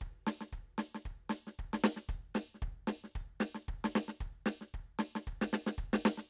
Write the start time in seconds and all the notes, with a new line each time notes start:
0.01 kick, closed hi-hat
0.27 closed hi-hat, snare
0.41 snare
0.53 kick, closed hi-hat
0.78 closed hi-hat, snare
0.95 snare
1.05 kick, closed hi-hat
1.29 closed hi-hat, snare
1.47 snare
1.59 kick, closed hi-hat
1.73 snare
1.84 snare
1.96 snare
2.09 closed hi-hat, kick
2.35 closed hi-hat, snare
2.54 snare
2.62 kick, closed hi-hat
2.87 snare, closed hi-hat
3.04 snare
3.15 closed hi-hat, kick
3.40 snare, closed hi-hat
3.55 snare
3.68 kick, closed hi-hat
3.84 snare
3.95 snare
4.08 snare
4.20 kick, closed hi-hat
4.46 closed hi-hat, snare
4.61 snare
4.74 kick, closed hi-hat
4.99 snare, closed hi-hat
5.15 snare
5.27 kick, closed hi-hat
5.41 snare
5.53 snare
5.67 snare
5.78 kick
5.93 snare
6.05 snare
6.18 snare